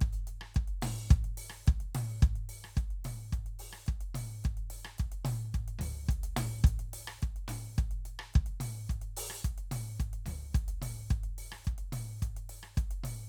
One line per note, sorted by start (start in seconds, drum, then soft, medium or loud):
0.01 kick loud
0.01 closed hi-hat soft
0.13 closed hi-hat soft
0.27 closed hi-hat medium
0.41 cross-stick medium
0.55 kick medium
0.55 closed hi-hat soft
0.68 closed hi-hat soft
0.82 open hi-hat medium
0.82 high tom loud
1.09 kick loud
1.09 closed hi-hat soft
1.09 hi-hat pedal soft
1.25 closed hi-hat soft
1.38 open hi-hat medium
1.50 cross-stick medium
1.65 kick loud
1.65 closed hi-hat soft
1.65 hi-hat pedal soft
1.81 closed hi-hat soft
1.95 open hi-hat medium
1.95 high tom loud
2.20 kick loud
2.20 closed hi-hat soft
2.20 hi-hat pedal soft
2.36 closed hi-hat soft
2.49 open hi-hat medium
2.64 cross-stick medium
2.76 kick medium
2.76 closed hi-hat soft
2.76 hi-hat pedal soft
2.91 closed hi-hat soft
3.05 open hi-hat medium
3.05 high tom medium
3.32 kick medium
3.32 closed hi-hat soft
3.32 hi-hat pedal soft
3.46 closed hi-hat soft
3.59 open hi-hat medium
3.73 cross-stick medium
3.86 kick medium
3.86 closed hi-hat soft
3.86 hi-hat pedal soft
4.01 closed hi-hat soft
4.15 open hi-hat medium
4.15 high tom loud
4.43 kick medium
4.43 closed hi-hat soft
4.43 hi-hat pedal soft
4.57 closed hi-hat soft
4.70 open hi-hat medium
4.85 cross-stick medium
4.98 kick medium
4.98 closed hi-hat medium
4.98 hi-hat pedal soft
5.12 closed hi-hat soft
5.25 open hi-hat medium
5.25 high tom loud
5.52 kick medium
5.52 closed hi-hat soft
5.52 hi-hat pedal soft
5.68 closed hi-hat soft
5.79 floor tom loud
5.79 open hi-hat medium
6.06 kick medium
6.06 hi-hat pedal soft
6.11 closed hi-hat medium
6.24 closed hi-hat medium
6.37 open hi-hat medium
6.37 high tom loud
6.62 kick loud
6.62 hi-hat pedal soft
6.67 closed hi-hat medium
6.80 closed hi-hat soft
6.94 open hi-hat medium
7.08 cross-stick medium
7.18 hi-hat pedal soft
7.22 kick medium
7.22 closed hi-hat soft
7.36 closed hi-hat soft
7.48 open hi-hat medium
7.48 high tom medium
7.76 kick medium
7.76 closed hi-hat soft
7.76 hi-hat pedal soft
7.91 closed hi-hat soft
8.06 open hi-hat medium
8.19 cross-stick medium
8.33 kick loud
8.33 closed hi-hat soft
8.33 hi-hat pedal soft
8.46 closed hi-hat soft
8.61 open hi-hat medium
8.61 high tom loud
8.87 kick medium
8.87 hi-hat pedal soft
8.91 closed hi-hat soft
9.02 closed hi-hat soft
9.17 open hi-hat loud
9.30 cross-stick medium
9.41 kick medium
9.41 closed hi-hat medium
9.41 hi-hat pedal soft
9.58 closed hi-hat soft
9.72 open hi-hat medium
9.72 high tom loud
9.96 kick medium
9.96 hi-hat pedal soft
10.01 closed hi-hat medium
10.13 closed hi-hat soft
10.26 floor tom medium
10.26 open hi-hat medium
10.53 kick medium
10.53 closed hi-hat medium
10.53 hi-hat pedal soft
10.68 closed hi-hat medium
10.82 open hi-hat medium
10.82 high tom medium
11.10 kick medium
11.10 closed hi-hat soft
11.10 hi-hat pedal soft
11.24 closed hi-hat soft
11.38 open hi-hat medium
11.52 cross-stick medium
11.64 kick medium
11.64 hi-hat pedal soft
11.64 open hi-hat soft
11.78 closed hi-hat soft
11.93 open hi-hat medium
11.93 high tom loud
12.19 kick medium
12.19 closed hi-hat medium
12.19 hi-hat pedal soft
12.37 closed hi-hat soft
12.50 open hi-hat medium
12.63 cross-stick medium
12.75 kick medium
12.75 closed hi-hat medium
12.75 hi-hat pedal soft
12.91 closed hi-hat soft
13.04 open hi-hat medium
13.04 high tom medium